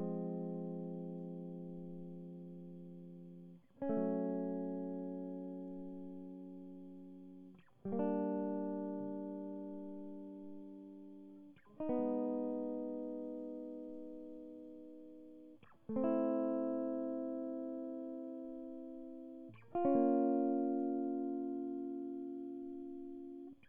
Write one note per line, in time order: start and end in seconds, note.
0.00 3.62 F3
0.00 3.01 G#3
0.00 3.56 C4
3.83 7.54 C#4
3.91 6.03 A3
3.99 7.64 F#3
7.87 11.51 G3
7.93 9.64 A#3
8.00 11.54 D4
11.81 15.59 D#4
11.90 15.56 B3
15.90 18.78 A3
15.97 19.52 C4
16.04 19.54 E4
19.76 23.51 F4
19.86 23.54 C#4
19.96 23.21 A#3